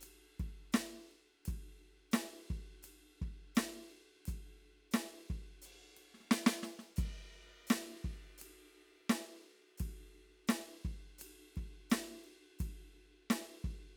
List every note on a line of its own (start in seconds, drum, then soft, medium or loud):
0.01 hi-hat pedal medium
0.01 ride medium
0.40 kick soft
0.40 ride soft
0.73 snare loud
0.73 hi-hat pedal medium
0.73 ride soft
1.11 ride soft
1.45 kick soft
1.45 hi-hat pedal medium
1.45 ride medium
1.76 ride soft
2.11 snare loud
2.11 hi-hat pedal medium
2.11 ride medium
2.50 kick soft
2.50 ride soft
2.83 hi-hat pedal soft
2.83 ride medium
3.22 kick soft
3.22 ride soft
3.55 snare loud
3.55 hi-hat pedal medium
3.55 ride medium
3.91 ride soft
4.26 kick soft
4.26 hi-hat pedal medium
4.26 ride soft
4.91 snare loud
4.91 hi-hat pedal medium
4.91 ride medium
5.29 kick soft
5.29 ride soft
5.62 hi-hat pedal medium
5.62 ride soft
5.83 ride soft
5.97 ride soft
6.14 snare soft
6.20 snare soft
6.25 snare soft
6.29 snare soft
6.31 snare loud
6.31 hi-hat pedal medium
6.46 snare loud
6.63 snare medium
6.79 snare soft
6.96 kick medium
6.96 hi-hat pedal medium
6.96 crash soft
7.67 snare loud
7.67 hi-hat pedal medium
7.67 ride medium
8.05 kick soft
8.38 hi-hat pedal medium
8.38 ride medium
9.10 snare loud
9.10 hi-hat pedal medium
9.10 ride medium
9.78 kick soft
9.78 hi-hat pedal medium
9.78 ride medium
10.15 ride soft
10.48 snare loud
10.48 hi-hat pedal medium
10.48 ride medium
10.85 kick soft
10.85 ride soft
11.18 hi-hat pedal medium
11.18 ride medium
11.56 kick soft
11.56 ride soft
11.90 snare loud
11.90 hi-hat pedal medium
11.90 ride medium
12.24 ride soft
12.59 kick soft
12.59 hi-hat pedal soft
12.59 ride soft
13.30 snare loud
13.30 hi-hat pedal medium
13.30 ride medium
13.64 kick soft